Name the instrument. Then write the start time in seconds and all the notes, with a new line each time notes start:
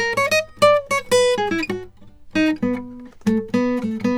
acoustic guitar
0.01 A#4
0.18 C#5
0.33 D#5
0.63 D5
0.92 C#5
1.13 B4
1.39 G#4
1.71 F#4
2.37 D#4
2.64 B3
3.28 A3
3.55 B3
3.79 A3
4.06 B3